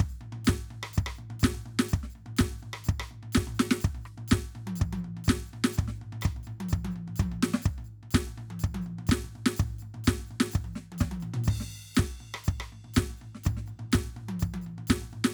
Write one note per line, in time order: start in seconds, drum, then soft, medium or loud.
0.01 kick loud
0.10 percussion soft
0.22 floor tom medium
0.33 floor tom medium
0.46 snare loud
0.46 percussion medium
0.50 kick loud
0.71 floor tom medium
0.84 high tom loud
0.94 floor tom soft
0.94 percussion medium
0.99 kick loud
1.07 high tom loud
1.16 floor tom medium
1.16 percussion soft
1.31 floor tom medium
1.41 kick loud
1.41 percussion medium
1.45 snare loud
1.55 floor tom medium
1.62 percussion soft
1.67 floor tom medium
1.80 snare loud
1.90 floor tom soft
1.90 percussion medium
1.94 kick loud
2.04 snare soft
2.11 percussion soft
2.16 floor tom soft
2.27 floor tom medium
2.38 kick loud
2.38 snare loud
2.38 percussion medium
2.52 floor tom soft
2.59 percussion soft
2.64 floor tom medium
2.74 high tom loud
2.85 floor tom medium
2.85 percussion medium
2.90 kick loud
3.01 high tom loud
3.07 percussion soft
3.12 floor tom medium
3.24 floor tom medium
3.33 snare loud
3.33 percussion medium
3.38 kick loud
3.48 floor tom medium
3.56 percussion soft
3.60 snare loud
3.72 snare loud
3.81 kick loud
3.81 percussion medium
3.96 floor tom medium
4.03 cross-stick medium
4.03 percussion soft
4.19 floor tom medium
4.29 snare loud
4.29 percussion medium
4.33 kick loud
4.50 percussion soft
4.56 floor tom medium
4.68 high tom loud
4.77 percussion medium
4.81 kick loud
4.81 floor tom medium
4.94 high tom loud
4.98 percussion soft
5.05 floor tom medium
5.18 floor tom medium
5.25 kick loud
5.25 percussion medium
5.30 snare loud
5.47 percussion soft
5.54 floor tom medium
5.65 snare loud
5.74 percussion medium
5.79 kick loud
5.79 floor tom loud
5.89 snare medium
5.96 percussion soft
6.02 floor tom medium
6.13 floor tom medium
6.22 kick loud
6.22 high tom loud
6.22 percussion medium
6.37 floor tom medium
6.44 floor tom medium
6.44 percussion soft
6.61 high tom loud
6.70 percussion medium
6.74 kick loud
6.74 floor tom medium
6.86 high tom loud
6.92 percussion soft
6.97 floor tom medium
7.09 floor tom medium
7.17 kick loud
7.17 percussion medium
7.21 high tom loud
7.33 floor tom medium
7.44 snare loud
7.55 snare loud
7.63 kick loud
7.63 percussion medium
7.79 floor tom medium
7.85 percussion soft
8.04 floor tom medium
8.12 kick loud
8.12 snare loud
8.12 percussion medium
8.28 floor tom medium
8.39 floor tom medium
8.51 high tom medium
8.60 percussion medium
8.64 kick loud
8.64 floor tom medium
8.75 high tom loud
8.83 percussion soft
8.87 floor tom medium
8.99 floor tom medium
9.08 kick loud
9.08 percussion medium
9.12 snare loud
9.25 floor tom medium
9.36 floor tom medium
9.47 snare loud
9.58 kick loud
9.58 floor tom medium
9.58 percussion medium
9.79 floor tom soft
9.79 percussion soft
9.95 floor tom medium
10.05 kick loud
10.05 snare loud
10.05 percussion medium
10.20 floor tom soft
10.27 percussion soft
10.32 floor tom medium
10.41 snare loud
10.53 kick loud
10.53 floor tom medium
10.53 percussion medium
10.65 high tom medium
10.74 snare medium
10.74 percussion soft
10.93 high tom loud
10.99 kick loud
10.99 snare loud
10.99 percussion medium
11.12 high tom loud
11.21 floor tom medium
11.21 percussion soft
11.35 floor tom loud
11.45 kick loud
11.45 percussion medium
11.49 crash medium
11.61 snare medium
11.96 snare loud
11.96 percussion medium
12.00 kick loud
12.21 floor tom medium
12.35 high tom loud
12.45 kick loud
12.45 floor tom medium
12.45 percussion medium
12.61 high tom loud
12.73 floor tom soft
12.85 floor tom medium
12.95 kick loud
12.95 snare loud
12.95 percussion medium
13.11 floor tom soft
13.18 percussion soft
13.22 floor tom medium
13.36 snare soft
13.45 kick loud
13.45 floor tom loud
13.45 percussion medium
13.58 snare soft
13.67 floor tom medium
13.67 percussion soft
13.80 floor tom medium
13.93 kick loud
13.93 snare loud
13.93 percussion medium
14.05 floor tom medium
14.17 floor tom medium
14.29 high tom loud
14.41 kick loud
14.41 floor tom medium
14.41 percussion medium
14.55 high tom loud
14.62 percussion soft
14.67 floor tom medium
14.79 floor tom medium
14.88 kick loud
14.88 snare loud
14.88 percussion medium
15.03 floor tom medium
15.11 floor tom medium
15.11 percussion soft
15.25 snare loud